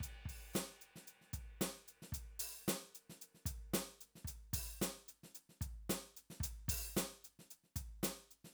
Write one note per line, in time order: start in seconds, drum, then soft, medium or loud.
0.01 kick soft
0.01 closed hi-hat medium
0.26 kick soft
0.26 open hi-hat medium
0.54 snare medium
0.54 closed hi-hat medium
0.54 hi-hat pedal medium
0.82 closed hi-hat medium
0.97 snare soft
1.08 closed hi-hat medium
1.22 snare soft
1.34 kick soft
1.34 closed hi-hat medium
1.62 snare medium
1.62 closed hi-hat medium
1.89 closed hi-hat medium
2.03 snare soft
2.13 kick soft
2.13 closed hi-hat loud
2.40 open hi-hat loud
2.69 snare medium
2.69 closed hi-hat loud
2.69 hi-hat pedal medium
2.95 closed hi-hat medium
3.10 snare soft
3.22 closed hi-hat medium
3.35 snare soft
3.46 kick soft
3.46 closed hi-hat loud
3.74 snare medium
3.74 closed hi-hat loud
4.01 closed hi-hat medium
4.16 snare soft
4.25 kick soft
4.25 closed hi-hat medium
4.54 kick soft
4.54 open hi-hat loud
4.82 snare medium
4.82 closed hi-hat loud
4.82 hi-hat pedal medium
5.09 closed hi-hat medium
5.24 snare soft
5.35 closed hi-hat medium
5.50 snare soft
5.62 kick soft
5.62 closed hi-hat medium
5.90 snare medium
5.90 closed hi-hat loud
6.17 closed hi-hat medium
6.31 snare soft
6.41 kick soft
6.41 closed hi-hat loud
6.69 kick soft
6.69 open hi-hat loud
6.97 snare medium
6.97 closed hi-hat loud
6.97 hi-hat pedal medium
7.25 closed hi-hat medium
7.40 snare soft
7.51 closed hi-hat medium
7.64 snare soft
7.76 kick soft
7.76 closed hi-hat medium
8.04 snare medium
8.04 closed hi-hat loud
8.31 closed hi-hat soft
8.45 snare soft